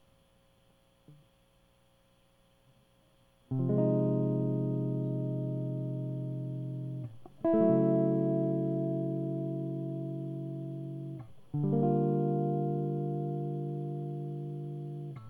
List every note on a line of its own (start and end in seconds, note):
3.53 7.09 C3
3.60 7.08 F3
3.70 7.02 G#3
3.79 7.09 D#4
7.45 11.24 E4
7.54 9.97 A3
7.62 11.10 C#3
7.62 11.20 F#3
11.55 15.16 D3
11.65 15.16 G3
11.73 14.65 A#3
11.84 15.16 F4